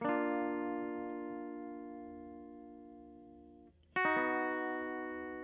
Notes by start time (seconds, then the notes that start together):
0.02 A#3 D4
0.09 F4
3.96 F#4
4.05 D#4
4.17 B3